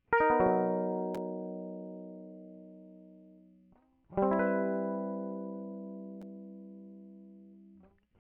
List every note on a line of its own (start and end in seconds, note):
0.13 3.39 A#4
0.21 3.82 D#4
0.30 4.22 B3
0.41 3.77 F#3
4.18 8.07 G3
4.23 7.88 C4
4.31 7.90 E4
4.39 7.54 B4